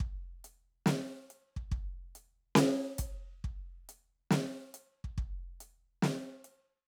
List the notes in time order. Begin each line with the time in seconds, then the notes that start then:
0.01 kick
0.05 crash
0.45 closed hi-hat
0.87 snare
1.31 closed hi-hat
1.57 kick
1.73 kick, crash
1.77 ride
2.16 closed hi-hat
2.56 snare
2.99 kick, closed hi-hat
3.45 kick, crash
3.90 closed hi-hat
4.32 snare
4.75 closed hi-hat
5.05 kick
5.19 kick, crash
5.61 closed hi-hat
6.03 snare
6.45 closed hi-hat